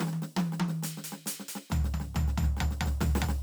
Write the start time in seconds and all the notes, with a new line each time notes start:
0.00 snare, high tom
0.07 snare
0.13 high tom
0.22 snare
0.36 snare, high tom
0.52 snare
0.60 high tom
0.68 snare
0.83 snare, closed hi-hat
0.97 snare
1.04 closed hi-hat
1.12 snare
1.26 snare, closed hi-hat
1.39 snare
1.48 closed hi-hat
1.55 snare
1.70 snare, floor tom
1.73 snare
1.84 snare
1.94 floor tom
2.00 snare
2.02 snare
2.14 snare, floor tom
2.28 snare
2.38 floor tom
2.43 snare
2.57 snare, floor tom
2.71 snare
2.81 floor tom
2.86 snare
3.01 snare, floor tom
3.15 snare
3.18 snare, floor tom
3.29 snare